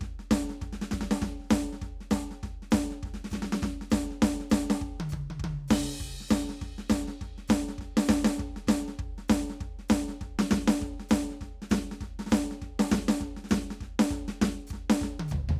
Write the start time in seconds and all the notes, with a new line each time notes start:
0.01 kick, snare
0.19 snare
0.31 kick, snare, hi-hat pedal
0.49 snare
0.61 kick, snare
0.73 snare
0.82 snare
0.91 kick, snare, hi-hat pedal
1.01 snare
1.11 snare
1.22 kick, snare
1.40 snare
1.44 snare
1.50 kick, snare, hi-hat pedal
1.73 snare
1.82 kick, snare
2.01 snare
2.11 kick, snare, hi-hat pedal
2.31 snare
2.43 kick, snare
2.62 snare
2.71 kick, snare, hi-hat pedal
2.91 snare
3.03 kick, snare
3.14 snare
3.24 snare
3.31 kick, snare, hi-hat pedal
3.42 snare
3.52 snare
3.62 kick, snare
3.81 snare
3.90 kick, snare, hi-hat pedal
4.11 snare
4.22 kick, snare
4.40 snare
4.50 kick, snare, hi-hat pedal
4.70 snare
4.81 kick
5.00 high tom
5.09 kick, hi-hat pedal
5.14 high tom
5.30 high tom
5.40 kick
5.44 high tom
5.68 kick, snare, hi-hat pedal, crash
6.00 kick
6.20 snare
6.28 kick, snare, hi-hat pedal
6.49 snare
6.61 kick, snare
6.78 snare
6.89 kick, snare, hi-hat pedal
7.08 snare
7.21 kick, snare
7.38 snare
7.48 kick, snare, hi-hat pedal
7.69 snare
7.78 kick, snare
7.97 snare
8.06 kick, snare, hi-hat pedal
8.25 snare
8.38 kick, snare
8.56 snare
8.68 kick, snare, hi-hat pedal
8.88 snare
8.99 kick, cross-stick
9.18 snare
9.28 kick, snare, hi-hat pedal
9.50 snare
9.61 kick, snare
9.79 snare
9.89 kick, snare, hi-hat pedal
10.09 snare
10.21 kick, snare
10.39 snare
10.50 kick, snare, hi-hat pedal
10.68 snare
10.81 kick, snare
11.00 snare
11.09 kick, snare, hi-hat pedal
11.31 snare
11.41 kick, snare
11.62 snare
11.70 kick, snare, hi-hat pedal
11.91 snare
12.01 kick, snare
12.19 snare
12.26 snare, hi-hat pedal
12.32 kick, snare
12.51 snare
12.62 kick, snare
12.79 snare
12.89 kick, snare, hi-hat pedal
13.09 snare
13.20 kick, snare
13.37 snare
13.44 snare
13.49 kick, snare, hi-hat pedal
13.71 snare
13.81 kick, snare
13.99 snare
14.08 kick, hi-hat pedal
14.12 snare
14.28 snare
14.42 kick, snare
14.67 kick, hi-hat pedal
14.73 snare
14.90 snare
15.01 kick, snare
15.20 high tom
15.28 kick, hi-hat pedal
15.32 floor tom
15.49 floor tom